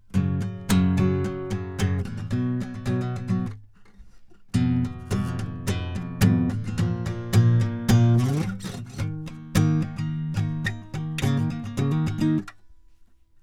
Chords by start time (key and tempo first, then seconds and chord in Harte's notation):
D# minor, 108 BPM
0.11 F#:sus4
2.33 B:(1,5)
4.56 F:(1,b5)
6.78 A#:(1,5,#11)/b5
9.00 D#:(1,5)